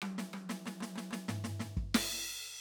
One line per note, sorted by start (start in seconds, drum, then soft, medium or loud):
0.02 cross-stick medium
0.02 high tom medium
0.18 snare medium
0.18 high tom medium
0.33 cross-stick medium
0.33 high tom medium
0.49 snare medium
0.49 high tom medium
0.66 snare medium
0.66 high tom medium
0.80 snare medium
0.80 high tom medium
0.96 snare medium
0.96 high tom medium
1.11 snare medium
1.11 high tom medium
1.28 snare medium
1.28 floor tom medium
1.44 snare medium
1.44 floor tom medium
1.59 snare medium
1.59 floor tom medium
1.77 kick medium
1.94 snare loud
1.94 crash loud